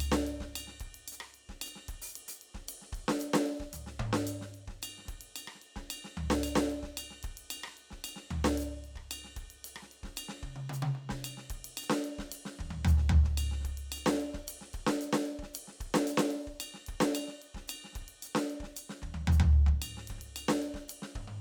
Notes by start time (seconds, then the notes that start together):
0.01 hi-hat pedal, ride bell
0.12 snare
0.27 ride
0.41 kick, snare
0.56 hi-hat pedal, ride bell
0.68 snare
0.73 cross-stick
0.80 kick, ride
0.95 ride
1.08 ride bell
1.12 hi-hat pedal
1.21 cross-stick
1.27 cross-stick
1.35 ride
1.49 kick, snare
1.62 hi-hat pedal, ride bell
1.76 snare
1.89 kick, ride
2.02 open hi-hat
2.10 hi-hat pedal
2.16 ride
2.29 open hi-hat
2.42 ride
2.55 kick, snare
2.68 hi-hat pedal, ride
2.82 snare
2.93 kick, ride
3.00 kick
3.09 snare
3.20 hi-hat pedal, ride
3.34 snare
3.47 ride
3.60 kick, snare
3.73 hi-hat pedal, ride, floor tom
3.87 snare
4.00 kick, mid tom
4.07 kick
4.10 kick, snare
4.27 hi-hat pedal, ride bell
4.42 snare
4.55 ride
4.68 kick, snare
4.83 hi-hat pedal, ride bell
4.99 snare
5.06 kick, snare, ride
5.21 ride
5.36 hi-hat pedal, ride bell
5.48 cross-stick
5.55 snare
5.62 ride
5.76 kick, snare
5.91 hi-hat pedal, ride bell
6.05 snare
6.18 floor tom
6.31 snare
6.44 hi-hat pedal, ride bell
6.56 snare
6.70 ride
6.83 kick, snare
6.98 hi-hat pedal, ride bell
7.11 snare
7.23 kick, ride
7.31 kick
7.38 ride
7.51 hi-hat pedal, ride bell
7.64 cross-stick
7.68 cross-stick
7.78 ride
7.91 kick, snare
8.05 hi-hat pedal, ride bell
8.16 snare
8.31 floor tom
8.45 snare
8.58 hi-hat pedal, ride
8.85 ride
8.96 kick, cross-stick
9.11 hi-hat pedal, ride bell
9.25 snare
9.37 kick, ride
9.43 kick
9.51 ride
9.65 hi-hat pedal, ride
9.76 cross-stick
9.83 snare
9.92 ride
10.04 kick, snare
10.09 kick
10.17 hi-hat pedal, ride bell
10.29 snare
10.43 kick, high tom
10.56 high tom
10.70 hi-hat pedal, high tom
10.83 high tom
10.96 high tom
11.10 kick, snare
11.16 kick
11.25 hi-hat pedal, ride bell
11.38 snare
11.46 cross-stick
11.50 kick, ride
11.57 kick
11.65 ride
11.78 ride bell
11.82 hi-hat pedal
11.90 snare
12.05 ride
12.19 kick, snare
12.32 hi-hat pedal, ride
12.46 snare
12.59 kick, floor tom
12.67 kick
12.71 floor tom
12.85 hi-hat pedal, floor tom
12.98 snare
13.10 floor tom
13.24 kick, snare
13.38 hi-hat pedal, ride bell
13.52 snare
13.61 snare
13.65 kick, ride
13.71 kick
13.78 ride
13.93 hi-hat pedal, ride bell
14.07 snare
14.14 snare
14.20 ride
14.34 kick, snare
14.40 kick
14.48 hi-hat pedal, ride
14.61 snare
14.74 kick, ride
14.81 kick
14.87 snare
15.02 hi-hat pedal, ride
15.13 snare
15.26 ride
15.39 kick, snare
15.54 hi-hat pedal, ride
15.68 snare
15.81 kick, ride
15.87 kick
15.95 snare
16.08 hi-hat pedal, ride bell
16.18 snare
16.31 ride
16.48 kick
16.61 hi-hat pedal, ride bell
16.74 snare
16.87 kick, ride
16.95 kick
17.01 snare
17.15 hi-hat pedal, ride bell
17.28 snare
17.42 ride
17.55 kick, snare
17.68 hi-hat pedal, ride bell
17.85 snare
17.93 kick, snare, ride
18.02 kick
18.09 ride
18.23 hi-hat pedal, ride bell
18.35 snare
18.50 ride
18.61 kick, snare
18.77 hi-hat pedal, ride bell
18.90 snare
19.02 kick, floor tom
19.15 floor tom
19.28 floor tom
19.33 hi-hat pedal
19.41 floor tom
19.53 floor tom
19.67 kick, floor tom
19.82 hi-hat pedal, ride bell
19.98 snare
20.08 kick, snare, ride
20.16 kick, snare
20.22 snare, ride
20.37 hi-hat pedal, ride bell
20.49 snare
20.62 ride
20.74 kick, snare
20.89 hi-hat pedal, ride
21.03 snare
21.16 kick, mid tom
21.28 mid tom